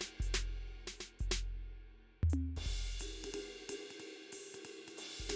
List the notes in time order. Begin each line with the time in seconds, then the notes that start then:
0.01 snare
0.20 open hi-hat, kick
0.34 snare, hi-hat pedal
0.87 snare
0.96 hi-hat pedal
1.00 snare
1.19 open hi-hat, kick
1.31 snare
2.23 floor tom
2.30 hi-hat pedal, high tom
2.35 closed hi-hat
2.57 kick, ride
2.66 kick, crash
3.00 hi-hat pedal, ride
3.24 ride
3.34 ride
3.60 snare
3.69 hi-hat pedal, ride
3.91 ride
4.00 ride
4.22 snare
4.32 hi-hat pedal, ride
4.54 ride
4.65 ride
4.87 snare, ride
4.97 hi-hat pedal, ride
5.20 kick
5.29 snare, ride